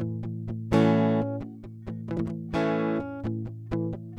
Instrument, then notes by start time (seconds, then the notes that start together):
acoustic guitar
0.01 A2 E3
0.24 A2
0.49 A2
0.73 A2 E3 A3 C#4 F#4
1.42 A2
1.64 A2
1.88 A2 E3
2.09 A2 E3
2.18 A2 E3
2.29 E3 A3
2.50 F#4
2.55 A2 E3 A3 C#4
3.25 A2
3.46 A2
3.73 A2
3.94 A2